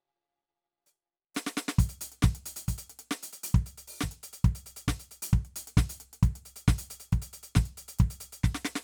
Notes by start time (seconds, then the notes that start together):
0.86 hi-hat pedal
1.35 snare, hi-hat pedal
1.57 snare
1.68 snare
1.79 closed hi-hat, kick
1.89 closed hi-hat
2.01 closed hi-hat
2.12 closed hi-hat
2.22 kick, snare
2.35 closed hi-hat
2.46 closed hi-hat
2.56 closed hi-hat
2.68 closed hi-hat, kick
2.78 closed hi-hat
2.90 closed hi-hat
2.99 closed hi-hat
3.11 snare
3.23 closed hi-hat
3.33 closed hi-hat
3.43 closed hi-hat
3.54 kick, closed hi-hat
3.66 closed hi-hat
3.78 open hi-hat
3.99 snare, hi-hat pedal
4.04 kick
4.11 closed hi-hat
4.23 closed hi-hat
4.33 closed hi-hat
4.44 kick, closed hi-hat
4.55 closed hi-hat
4.66 closed hi-hat
4.76 closed hi-hat
4.88 kick, snare
5.00 closed hi-hat
5.11 closed hi-hat
5.22 closed hi-hat
5.33 kick, closed hi-hat
5.45 closed hi-hat
5.56 closed hi-hat
5.67 closed hi-hat
5.77 kick, snare
5.89 closed hi-hat
6.00 closed hi-hat
6.13 closed hi-hat
6.23 kick, closed hi-hat
6.35 closed hi-hat
6.45 closed hi-hat
6.56 closed hi-hat
6.68 kick, snare
6.78 closed hi-hat
6.90 closed hi-hat
7.00 closed hi-hat
7.12 kick, closed hi-hat
7.22 closed hi-hat
7.33 closed hi-hat
7.43 closed hi-hat
7.55 kick, snare
7.65 closed hi-hat
7.77 closed hi-hat
7.88 closed hi-hat
7.99 kick, closed hi-hat
8.10 closed hi-hat
8.32 closed hi-hat
8.44 kick, snare
8.55 snare
8.75 snare